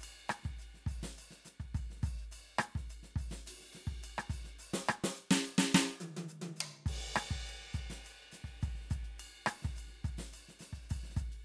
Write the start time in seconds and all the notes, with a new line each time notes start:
0.01 hi-hat pedal, ride bell
0.29 cross-stick, hi-hat pedal, ride
0.44 kick, snare
0.59 hi-hat pedal, ride
0.75 snare
0.87 kick, hi-hat pedal, ride
1.02 snare, ride
1.19 hi-hat pedal, ride bell
1.31 snare
1.46 snare, hi-hat pedal, ride
1.60 kick, ride
1.75 kick, hi-hat pedal, ride bell
1.91 snare
1.96 snare
2.01 kick, snare, hi-hat pedal
2.06 ride
2.19 ride
2.32 hi-hat pedal, ride bell
2.59 cross-stick, hi-hat pedal, ride
2.76 kick, snare
2.90 hi-hat pedal, ride bell
3.04 snare
3.17 kick, hi-hat pedal, ride
3.31 snare, ride
3.47 hi-hat pedal, ride
3.61 snare
3.73 snare, hi-hat pedal, ride
3.88 kick, ride
4.04 hi-hat pedal, ride bell
4.19 cross-stick
4.30 kick, hi-hat pedal, ride
4.45 snare
4.59 hi-hat pedal
4.74 snare
4.86 cross-stick, hi-hat pedal
5.05 snare
5.15 hi-hat pedal
5.32 snare
5.44 hi-hat pedal
5.59 snare
5.74 snare, hi-hat pedal
6.01 hi-hat pedal, high tom
6.17 high tom
6.29 hi-hat pedal
6.42 high tom
6.57 hi-hat pedal
6.61 high tom
6.87 kick, hi-hat pedal, ride
7.16 cross-stick, hi-hat pedal
7.31 kick, snare
7.46 hi-hat pedal, ride bell
7.62 snare
7.74 kick, hi-hat pedal, ride
7.90 snare, ride
8.05 hi-hat pedal, ride bell
8.21 snare
8.32 snare, hi-hat pedal, ride
8.45 kick, ride
8.62 kick, hi-hat pedal, ride bell
8.75 snare
8.80 snare
8.84 snare
8.87 snare
8.91 kick, hi-hat pedal, ride
9.05 ride
9.19 hi-hat pedal, ride bell
9.47 cross-stick, hi-hat pedal, ride
9.63 kick, snare
9.77 hi-hat pedal, ride bell
9.88 snare
10.05 kick, hi-hat pedal, ride
10.18 snare, ride
10.34 hi-hat pedal, ride bell
10.49 snare
10.60 snare, hi-hat pedal, ride
10.73 kick, ride
10.90 kick, hi-hat pedal, ride bell
11.04 snare
11.11 snare
11.16 kick, snare, hi-hat pedal, ride
11.25 snare
11.33 ride